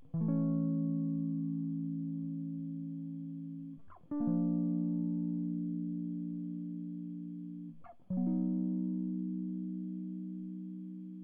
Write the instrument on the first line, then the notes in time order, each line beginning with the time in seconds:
electric guitar
0.15 E3
0.22 A3
0.29 C#4
4.12 D4
4.21 A#3
4.28 F3
8.11 F#3
8.18 B3
8.27 D#4